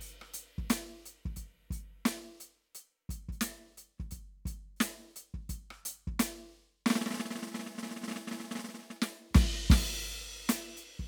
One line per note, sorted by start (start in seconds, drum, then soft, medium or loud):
0.01 open hi-hat medium
0.22 cross-stick medium
0.34 closed hi-hat loud
0.58 kick medium
0.70 closed hi-hat loud
0.70 snare loud
1.01 cross-stick soft
1.06 closed hi-hat medium
1.26 kick soft
1.36 closed hi-hat medium
1.36 kick soft
1.71 open hi-hat medium
1.71 kick soft
2.05 open hi-hat loud
2.05 snare loud
2.05 hi-hat pedal soft
2.17 snare soft
2.41 closed hi-hat medium
2.75 closed hi-hat medium
3.09 closed hi-hat medium
3.09 kick soft
3.29 kick soft
3.29 hi-hat pedal soft
3.41 closed hi-hat loud
3.41 snare loud
3.78 closed hi-hat medium
3.98 kick soft
3.98 snare soft
3.98 hi-hat pedal soft
4.11 closed hi-hat medium
4.11 kick soft
4.46 closed hi-hat medium
4.46 kick soft
4.50 snare soft
4.77 hi-hat pedal soft
4.81 closed hi-hat loud
4.81 snare loud
5.16 closed hi-hat medium
5.34 kick soft
5.50 closed hi-hat medium
5.50 kick soft
5.71 cross-stick medium
5.85 closed hi-hat loud
6.08 kick medium
6.20 closed hi-hat loud
6.20 snare loud
6.86 snare loud
6.91 snare loud
6.96 snare loud
7.01 snare medium
7.06 snare medium
7.11 snare medium
7.14 snare medium
7.18 snare medium
7.20 snare medium
7.26 snare medium
7.31 snare medium
7.39 snare medium
7.43 snare medium
7.47 snare medium
7.52 snare soft
7.55 snare medium
7.60 snare medium
7.63 snare soft
7.67 snare medium
7.71 snare soft
7.75 snare soft
7.78 snare medium
7.83 snare medium
7.86 snare medium
7.90 snare soft
7.91 snare medium
7.97 snare medium
8.04 snare medium
8.08 snare medium
8.11 snare medium
8.15 snare soft
8.15 snare medium
8.21 snare soft
8.25 snare soft
8.28 snare medium
8.31 snare medium
8.34 snare medium
8.38 snare soft
8.40 snare medium
8.44 snare soft
8.48 snare soft
8.51 snare medium
8.56 snare medium
8.59 snare medium
8.65 snare medium
8.69 snare medium
8.79 snare soft
8.83 snare soft
8.90 snare soft
8.97 cross-stick soft
9.02 snare loud
9.31 kick soft
9.31 snare loud
9.31 hi-hat pedal medium
9.35 kick loud
9.35 crash loud
9.66 kick soft
9.70 kick loud
9.70 snare loud
9.70 crash loud
10.48 closed hi-hat loud
10.48 snare loud
10.48 hi-hat pedal soft
10.77 closed hi-hat medium
11.00 kick soft